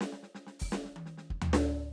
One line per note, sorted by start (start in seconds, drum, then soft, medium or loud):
0.01 snare loud
0.12 snare soft
0.23 snare soft
0.35 snare medium
0.47 snare soft
0.59 open hi-hat loud
0.59 kick medium
0.71 snare loud
0.71 hi-hat pedal medium
0.85 snare soft
0.96 closed hi-hat soft
0.96 high tom medium
1.05 snare soft
1.18 snare soft
1.30 kick medium
1.42 floor tom loud
1.53 snare loud